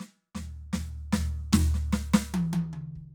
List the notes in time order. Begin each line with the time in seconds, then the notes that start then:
0.00 snare
0.36 snare, floor tom
0.74 snare, floor tom
1.13 snare, floor tom
1.53 snare, floor tom
1.75 snare
1.93 snare
2.14 snare
2.35 high tom
2.54 high tom
2.74 mid tom
2.96 kick